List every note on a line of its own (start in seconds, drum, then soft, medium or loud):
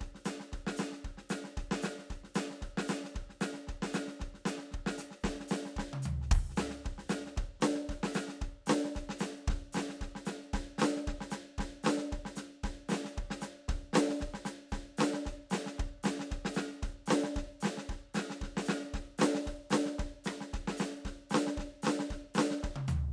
0.01 kick soft
0.01 snare soft
0.15 snare soft
0.25 snare medium
0.25 hi-hat pedal medium
0.40 snare soft
0.52 kick soft
0.52 snare soft
0.67 snare medium
0.77 snare medium
0.77 hi-hat pedal medium
0.92 snare soft
1.05 kick soft
1.05 snare soft
1.18 snare soft
1.30 snare medium
1.30 hi-hat pedal medium
1.44 snare soft
1.57 kick medium
1.57 snare soft
1.72 snare medium
1.82 snare medium
1.82 hi-hat pedal medium
1.99 snare soft
2.10 kick soft
2.10 snare soft
2.24 snare soft
2.35 snare loud
2.35 hi-hat pedal medium
2.51 snare soft
2.62 kick soft
2.62 snare soft
2.78 snare medium
2.88 snare medium
2.88 hi-hat pedal medium
3.04 snare soft
3.15 kick medium
3.15 snare soft
3.30 snare soft
3.41 snare medium
3.41 hi-hat pedal medium
3.54 snare soft
3.68 kick soft
3.68 snare soft
3.83 snare medium
3.94 snare medium
3.94 hi-hat pedal medium
4.08 snare soft
4.20 kick soft
4.20 snare soft
4.34 snare soft
4.46 snare medium
4.46 hi-hat pedal medium
4.58 snare soft
4.71 kick medium
4.71 snare soft
4.87 snare medium
4.98 snare soft
4.98 hi-hat pedal medium
5.11 snare soft
5.21 kick soft
5.21 snare medium
5.21 hi-hat pedal soft
5.40 snare soft
5.48 snare loud
5.48 hi-hat pedal medium
5.66 snare soft
5.77 kick soft
5.77 snare medium
5.94 high tom loud
6.03 floor tom loud
6.03 hi-hat pedal medium
6.22 snare soft
6.32 kick loud
6.32 ride medium
6.50 snare soft
6.57 snare loud
6.57 hi-hat pedal medium
6.71 snare soft
6.85 kick medium
6.85 snare soft
6.98 snare soft
7.10 snare loud
7.10 hi-hat pedal medium
7.27 snare soft
7.37 kick medium
7.37 snare soft
7.60 snare soft
7.60 hi-hat pedal medium
7.63 snare loud
7.75 snare soft
7.89 kick soft
7.89 snare soft
8.04 snare medium
8.14 snare medium
8.14 hi-hat pedal medium
8.29 snare soft
8.42 kick medium
8.42 snare soft
8.67 snare medium
8.67 hi-hat pedal medium
8.70 snare loud
8.85 snare soft
8.96 kick soft
8.96 snare soft
9.10 snare medium
9.19 snare medium
9.19 hi-hat pedal medium
9.48 kick medium
9.48 snare medium
9.73 snare medium
9.73 hi-hat pedal medium
9.77 snare medium
9.90 snare soft
10.01 kick soft
10.01 snare soft
10.16 snare soft
10.26 snare medium
10.26 hi-hat pedal medium
10.54 kick medium
10.54 snare medium
10.79 snare medium
10.79 hi-hat pedal medium
10.82 snare loud
10.97 snare soft
11.08 kick medium
11.08 snare soft
11.21 snare medium
11.31 snare medium
11.31 hi-hat pedal medium
11.58 kick medium
11.58 snare medium
11.84 snare medium
11.84 hi-hat pedal medium
11.87 snare loud
11.98 snare soft
12.12 kick medium
12.12 snare soft
12.26 snare medium
12.36 snare medium
12.36 hi-hat pedal medium
12.64 kick medium
12.64 snare medium
12.89 snare medium
12.89 hi-hat pedal medium
12.92 snare medium
13.05 snare soft
13.18 kick medium
13.18 snare soft
13.31 snare medium
13.42 snare medium
13.42 hi-hat pedal medium
13.69 kick medium
13.69 snare medium
13.94 snare medium
13.94 hi-hat pedal medium
13.96 snare loud
14.10 snare soft
14.21 kick soft
14.21 snare soft
14.34 snare medium
14.46 snare medium
14.46 hi-hat pedal medium
14.69 kick medium
14.69 snare medium
14.69 hi-hat pedal soft
14.98 snare medium
14.98 hi-hat pedal medium
15.01 snare loud
15.14 snare medium
15.26 kick soft
15.26 snare soft
15.51 snare medium
15.51 hi-hat pedal medium
15.53 snare loud
15.67 snare medium
15.79 kick medium
15.79 snare soft
16.04 snare medium
16.04 snare loud
16.04 hi-hat pedal medium
16.20 snare medium
16.31 kick medium
16.31 snare soft
16.45 snare medium
16.54 snare medium
16.54 hi-hat pedal medium
16.83 kick medium
16.83 snare soft
17.06 snare medium
17.06 hi-hat pedal medium
17.11 snare loud
17.24 snare medium
17.36 kick medium
17.36 snare soft
17.61 snare medium
17.61 hi-hat pedal medium
17.65 snare medium
17.78 snare medium
17.89 kick medium
17.89 snare soft
18.14 snare medium
18.14 hi-hat pedal medium
18.17 snare medium
18.30 snare medium
18.42 kick soft
18.42 snare soft
18.57 snare medium
18.65 snare loud
18.65 hi-hat pedal medium
18.84 snare soft
18.94 kick medium
18.94 snare soft
19.18 snare medium
19.18 hi-hat pedal medium
19.22 snare loud
19.35 snare medium
19.46 kick soft
19.46 snare soft
19.71 snare medium
19.71 hi-hat pedal medium
19.73 snare loud
19.86 snare soft
19.99 kick medium
19.99 snare soft
20.25 cross-stick medium
20.25 snare medium
20.25 hi-hat pedal medium
20.41 snare soft
20.54 kick medium
20.54 snare soft
20.68 snare medium
20.78 snare medium
20.78 hi-hat pedal medium
21.05 kick soft
21.05 snare medium
21.30 snare medium
21.30 hi-hat pedal medium
21.35 snare loud
21.47 snare medium
21.58 kick soft
21.58 snare soft
21.83 snare medium
21.83 hi-hat pedal medium
21.87 snare medium
22.00 snare medium
22.11 kick soft
22.11 snare soft
22.35 snare medium
22.35 hi-hat pedal medium
22.39 snare loud
22.51 snare medium
22.63 kick medium
22.63 snare soft
22.76 high tom loud
22.88 floor tom loud
22.88 hi-hat pedal medium